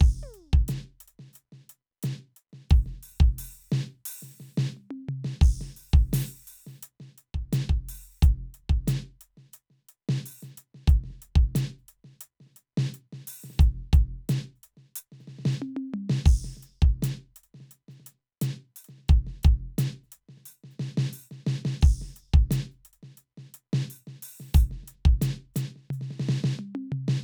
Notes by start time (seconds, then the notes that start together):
0.01 kick, crash
0.23 high tom
0.35 closed hi-hat
0.54 kick
0.69 closed hi-hat, snare
1.01 closed hi-hat
1.09 closed hi-hat
1.20 snare
1.34 closed hi-hat, hi-hat pedal
1.53 snare
1.64 snare
1.70 closed hi-hat
2.04 closed hi-hat, snare
2.37 closed hi-hat
2.50 snare, closed hi-hat
2.71 kick, open hi-hat
2.87 snare
3.04 open hi-hat
3.21 kick
3.39 open hi-hat
3.73 snare
4.06 open hi-hat
4.23 snare
4.41 snare
4.58 snare
4.78 mid tom
4.91 high tom
5.10 floor tom
5.25 snare
5.42 kick, crash
5.62 snare
5.77 open hi-hat
5.94 kick
6.14 open hi-hat, snare
6.48 open hi-hat
6.67 snare
6.84 closed hi-hat
7.01 snare
7.19 closed hi-hat
7.35 kick
7.54 closed hi-hat, snare
7.70 kick
7.89 open hi-hat
8.18 hi-hat pedal
8.23 closed hi-hat, kick
8.55 closed hi-hat
8.70 kick
8.88 closed hi-hat, snare
9.22 closed hi-hat
9.38 snare
9.54 closed hi-hat, hi-hat pedal
9.71 snare
9.89 closed hi-hat
10.10 snare
10.27 open hi-hat
10.43 snare
10.58 closed hi-hat
10.75 snare
10.88 closed hi-hat, kick
11.05 snare
11.11 snare
11.23 closed hi-hat
11.36 kick
11.56 closed hi-hat, snare
11.79 hi-hat pedal
11.89 closed hi-hat
12.05 snare
12.22 closed hi-hat
12.41 snare
12.47 snare
12.57 closed hi-hat
12.78 snare
12.95 closed hi-hat
13.13 snare
13.28 open hi-hat
13.45 snare
13.51 snare
13.58 closed hi-hat, kick, snare, hi-hat pedal
13.68 snare
13.72 snare
13.75 snare
13.83 snare
13.94 closed hi-hat, kick
14.30 closed hi-hat, snare
14.56 hi-hat pedal
14.64 closed hi-hat
14.78 snare
14.96 open hi-hat, hi-hat pedal
15.13 snare
15.21 snare, hi-hat pedal
15.28 snare
15.39 snare
15.46 snare
15.53 hi-hat pedal
15.63 high tom
15.77 high tom
15.95 mid tom
16.11 snare
16.26 kick, crash
16.45 snare
16.58 snare
16.63 closed hi-hat
16.83 kick
17.03 open hi-hat, snare
17.37 closed hi-hat
17.44 closed hi-hat
17.55 snare
17.61 snare
17.72 closed hi-hat
17.89 snare, hi-hat pedal
18.01 snare
18.07 closed hi-hat
18.42 closed hi-hat, snare
18.77 open hi-hat, hi-hat pedal
18.85 closed hi-hat
18.90 snare
18.99 snare
19.09 closed hi-hat, kick
19.28 snare
19.44 closed hi-hat, kick
19.79 closed hi-hat, snare
20.04 snare, hi-hat pedal
20.13 closed hi-hat
20.30 snare
20.38 snare
20.46 open hi-hat, hi-hat pedal
20.65 snare
20.71 hi-hat pedal
20.80 snare
20.98 snare
21.14 open hi-hat
21.23 hi-hat pedal
21.32 snare
21.47 snare, hi-hat pedal
21.66 snare
21.82 kick, crash
21.93 hi-hat pedal
22.02 snare
22.17 closed hi-hat
22.35 kick
22.52 closed hi-hat, snare
22.72 hi-hat pedal
22.86 closed hi-hat
22.94 closed hi-hat
23.04 snare
23.18 closed hi-hat
23.38 snare
23.55 closed hi-hat
23.74 snare
23.91 open hi-hat
23.96 hi-hat pedal
24.08 snare
24.23 open hi-hat
24.41 snare
24.55 open hi-hat, kick
24.72 snare
24.84 snare
24.88 closed hi-hat
25.06 kick
25.22 closed hi-hat, snare
25.55 closed hi-hat, snare, hi-hat pedal
25.77 snare
25.91 floor tom, hi-hat pedal
26.02 snare
26.12 snare
26.20 snare
26.30 snare
26.45 snare
26.60 mid tom
26.76 high tom
26.93 floor tom
27.09 snare